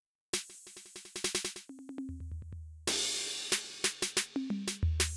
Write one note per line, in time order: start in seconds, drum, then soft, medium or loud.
0.33 snare loud
0.33 crash loud
0.50 snare soft
0.54 hi-hat pedal medium
0.67 snare soft
0.77 snare soft
0.86 snare soft
0.96 snare medium
1.05 snare soft
1.16 snare medium
1.24 snare loud
1.35 snare loud
1.45 snare loud
1.56 snare medium
1.69 high tom medium
1.79 high tom medium
1.89 high tom medium
1.98 high tom loud
2.09 floor tom medium
2.20 floor tom soft
2.32 floor tom soft
2.42 floor tom medium
2.53 floor tom medium
2.87 snare loud
2.87 ride loud
3.05 snare soft
3.16 snare soft
3.21 snare soft
3.25 snare soft
3.37 snare soft
3.40 snare soft
3.43 snare soft
3.47 snare soft
3.52 snare loud
3.64 snare soft
3.70 snare soft
3.74 snare soft
3.78 snare soft
3.81 snare soft
3.84 snare loud
4.02 snare loud
4.17 snare loud
4.36 high tom loud
4.50 mid tom loud
4.68 snare loud
4.83 floor tom loud
5.00 open hi-hat loud
5.00 snare loud